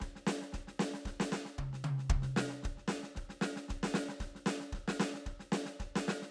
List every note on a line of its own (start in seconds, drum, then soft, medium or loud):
0.01 kick soft
0.01 snare soft
0.16 snare soft
0.27 snare loud
0.42 snare soft
0.53 kick soft
0.53 snare soft
0.68 snare soft
0.80 snare loud
0.94 snare soft
1.06 kick soft
1.06 snare soft
1.21 snare medium
1.33 snare medium
1.46 snare soft
1.59 kick soft
1.59 high tom medium
1.74 snare soft
1.85 high tom loud
1.99 snare soft
2.10 kick loud
2.10 high tom loud
2.23 snare soft
2.37 snare loud
2.50 snare soft
2.63 kick medium
2.63 snare soft
2.78 snare soft
2.88 snare medium
3.04 snare soft
3.16 kick soft
3.16 snare soft
3.30 snare soft
3.42 snare medium
3.57 snare soft
3.69 kick soft
3.69 snare soft
3.84 snare medium
3.95 snare loud
4.09 snare soft
4.21 kick soft
4.21 snare soft
4.36 snare soft
4.47 snare loud
4.61 snare soft
4.73 kick soft
4.73 snare soft
4.88 snare medium
5.00 snare loud
5.14 snare soft
5.26 kick soft
5.26 snare soft
5.40 snare soft
5.53 snare loud
5.66 snare soft
5.80 kick soft
5.80 snare soft
5.96 snare medium
6.09 snare medium
6.23 snare soft